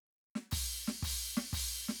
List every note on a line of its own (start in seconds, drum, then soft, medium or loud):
0.36 snare medium
0.51 kick medium
0.51 crash loud
0.88 snare medium
1.03 kick medium
1.03 crash loud
1.37 snare medium
1.53 kick medium
1.53 crash loud
1.89 snare medium